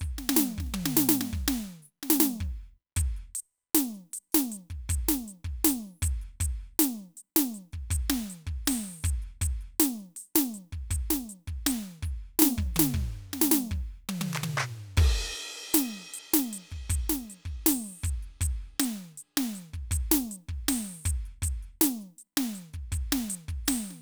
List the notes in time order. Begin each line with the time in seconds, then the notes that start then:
0.01 kick, hi-hat pedal
0.18 snare
0.29 snare
0.37 snare, hi-hat pedal
0.58 kick, snare
0.67 snare
0.74 high tom
0.79 kick
0.86 snare
0.97 snare
1.09 snare
1.21 snare
1.33 kick
1.48 snare
1.83 hi-hat pedal
2.03 snare
2.10 snare
2.41 kick
2.97 closed hi-hat, kick
3.17 closed hi-hat
3.35 closed hi-hat
3.56 closed hi-hat
3.75 closed hi-hat, snare
3.95 closed hi-hat
4.11 closed hi-hat, hi-hat pedal
4.32 snare, closed hi-hat
4.52 closed hi-hat
4.70 kick, closed hi-hat
4.89 closed hi-hat, kick, snare
5.09 snare, closed hi-hat
5.28 closed hi-hat
5.45 kick, closed hi-hat
5.65 open hi-hat, snare, hi-hat pedal
6.02 closed hi-hat, kick, hi-hat pedal
6.22 closed hi-hat
6.40 closed hi-hat, kick
6.60 closed hi-hat
6.79 closed hi-hat, snare
6.98 closed hi-hat
7.17 closed hi-hat
7.36 snare, closed hi-hat
7.54 closed hi-hat
7.73 kick, closed hi-hat
7.91 closed hi-hat, kick
8.10 snare
8.30 closed hi-hat
8.47 kick, closed hi-hat
8.66 open hi-hat, snare, hi-hat pedal
9.03 closed hi-hat, kick, hi-hat pedal
9.22 closed hi-hat
9.42 closed hi-hat, kick
9.61 closed hi-hat
9.80 closed hi-hat, snare
9.99 closed hi-hat
10.16 open hi-hat, hi-hat pedal
10.35 snare, closed hi-hat
10.54 closed hi-hat
10.73 kick, closed hi-hat
10.91 closed hi-hat, kick
11.11 snare
11.29 closed hi-hat
11.48 kick, closed hi-hat
11.67 open hi-hat, snare
12.03 kick, hi-hat pedal
12.39 snare, hi-hat pedal
12.42 snare
12.58 kick
12.75 hi-hat pedal, mid tom
12.80 snare
12.94 kick
13.33 snare
13.42 snare
13.50 snare, hi-hat pedal
13.71 kick
14.09 high tom
14.21 high tom
14.33 percussion
14.44 mid tom
14.57 percussion
14.97 kick, ride
15.35 closed hi-hat
15.54 closed hi-hat
15.74 closed hi-hat, snare
16.14 closed hi-hat
16.34 snare, closed hi-hat
16.53 closed hi-hat
16.71 kick, closed hi-hat
16.90 closed hi-hat, kick
17.10 snare, closed hi-hat
17.30 closed hi-hat
17.45 kick, closed hi-hat
17.66 open hi-hat, snare
18.03 closed hi-hat, kick, hi-hat pedal
18.23 closed hi-hat
18.41 closed hi-hat, kick
18.62 closed hi-hat
18.80 closed hi-hat, snare
18.98 closed hi-hat
19.18 closed hi-hat
19.37 snare
19.55 closed hi-hat
19.74 kick, closed hi-hat
19.91 closed hi-hat, kick
20.12 snare
20.31 closed hi-hat
20.49 kick, closed hi-hat
20.69 open hi-hat, snare
21.04 closed hi-hat, kick, hi-hat pedal
21.26 closed hi-hat
21.42 closed hi-hat, kick
21.63 closed hi-hat
21.81 closed hi-hat, snare
22.01 closed hi-hat
22.18 closed hi-hat
22.37 snare, closed hi-hat
22.55 closed hi-hat
22.74 kick, closed hi-hat
22.92 closed hi-hat, kick
23.12 snare, closed hi-hat
23.30 closed hi-hat
23.49 kick, closed hi-hat
23.66 open hi-hat, snare, hi-hat pedal
23.91 snare